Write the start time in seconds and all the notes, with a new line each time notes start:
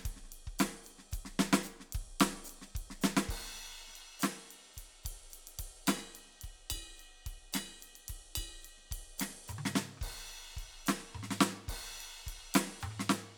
0.01 hi-hat pedal
0.06 kick, ride
0.12 kick
0.17 snare
0.24 snare
0.32 ride
0.47 kick
0.59 snare, hi-hat pedal, ride
0.71 snare
0.84 hi-hat pedal, ride
0.99 snare
1.12 kick, hi-hat pedal, ride
1.20 kick
1.26 snare
1.40 snare
1.53 snare
1.64 hi-hat pedal, ride bell
1.81 snare
1.93 kick, ride
2.02 kick
2.20 snare, ride
2.45 hi-hat pedal
2.50 ride
2.62 snare
2.76 kick, ride
2.82 kick
2.91 snare
3.02 snare, hi-hat pedal
3.17 snare
3.29 kick, crash
3.36 kick
3.88 snare
3.96 ride
4.20 snare, hi-hat pedal, ride
4.51 ride
4.74 kick, hi-hat pedal
4.78 ride
5.04 kick, hi-hat pedal, ride
5.11 kick
5.31 hi-hat pedal, ride
5.48 ride
5.59 kick, snare, ride
5.87 snare, hi-hat pedal, ride bell
5.98 snare
6.15 hi-hat pedal, ride
6.28 snare
6.42 kick, ride
6.71 kick, ride bell
6.77 kick
6.97 hi-hat pedal, ride
7.27 kick, ride
7.53 snare, hi-hat pedal, ride bell
7.80 hi-hat pedal, ride
7.96 ride
8.09 kick, ride
8.36 kick, ride bell
8.44 kick
8.62 hi-hat pedal, ride
8.78 snare
8.83 snare
8.86 snare
8.92 kick, ride
8.97 kick
9.19 snare, hi-hat pedal, ride
9.30 snare
9.48 hi-hat pedal, mid tom
9.59 high tom
9.66 snare
9.98 kick, cross-stick
10.03 crash
10.08 kick
10.52 cross-stick
10.57 kick, ride
10.65 kick
10.87 snare, hi-hat pedal, ride
10.99 snare
11.15 mid tom
11.23 snare
11.31 snare
11.37 hi-hat pedal
11.41 snare
11.50 snare
11.69 kick, snare, crash
11.75 kick
11.97 hi-hat pedal, ride
12.21 snare
12.27 kick, ride
12.55 snare, hi-hat pedal, ride
12.66 snare
12.81 hi-hat pedal, mid tom
12.91 cross-stick
13.00 snare
13.10 snare, hi-hat pedal